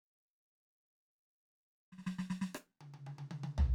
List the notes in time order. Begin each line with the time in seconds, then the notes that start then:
1.92 snare
1.98 snare
2.06 snare
2.19 snare
2.30 snare
2.41 snare
2.55 cross-stick
2.81 high tom
2.94 high tom
3.07 high tom
3.19 high tom
3.31 high tom
3.44 closed hi-hat, high tom
3.58 floor tom